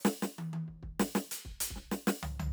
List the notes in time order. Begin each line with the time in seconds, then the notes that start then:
0.03 snare, hi-hat pedal
0.22 snare
0.38 high tom
0.53 high tom
0.68 kick
0.83 kick
1.00 snare
1.15 snare
1.31 closed hi-hat
1.45 kick
1.60 closed hi-hat
1.70 kick
1.76 snare
1.91 snare
2.07 snare
2.23 floor tom
2.40 floor tom
2.46 kick